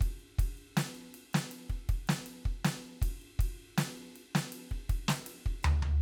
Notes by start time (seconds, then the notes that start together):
0.01 kick, ride
0.20 ride
0.39 kick, ride
0.58 ride
0.77 snare, ride
0.95 ride
1.15 ride
1.34 snare, ride
1.52 ride
1.70 kick, ride
1.89 kick, ride
2.08 snare, ride
2.26 ride
2.45 kick, ride
2.65 snare, ride
3.02 kick, ride
3.22 ride
3.39 kick, ride
3.60 ride
3.78 snare, ride
3.97 ride
4.16 ride
4.35 snare, ride
4.53 ride
4.71 kick, ride
4.90 kick, ride
5.08 snare
5.25 hi-hat pedal, ride
5.46 kick
5.63 hi-hat pedal, floor tom
5.83 floor tom